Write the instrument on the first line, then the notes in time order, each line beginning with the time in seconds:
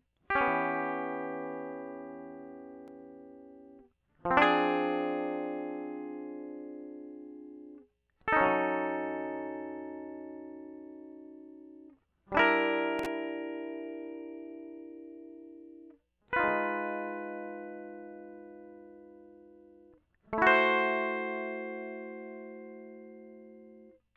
electric guitar
0.31 G4
0.36 C#4
0.41 B3
0.49 E3
4.26 F3
4.31 C4
4.38 D4
4.42 G#4
8.28 A4
8.33 D#4
8.37 C#4
8.42 F#3
12.33 G3 D4
12.37 E4 A#4
16.33 F4 B4
16.40 D#4
16.44 G#3
20.34 A3
20.38 E4 F#4
20.47 C5